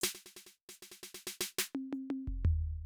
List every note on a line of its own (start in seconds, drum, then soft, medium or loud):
0.01 snare loud
0.01 hi-hat pedal medium
0.15 snare soft
0.26 snare soft
0.36 snare soft
0.46 snare soft
0.69 snare soft
0.69 hi-hat pedal medium
0.82 snare soft
0.92 snare soft
1.03 snare soft
1.14 snare soft
1.27 snare medium
1.41 snare loud
1.58 snare loud
1.75 high tom loud
1.93 closed hi-hat soft
1.93 high tom loud
2.10 high tom loud
2.28 kick soft
2.45 floor tom loud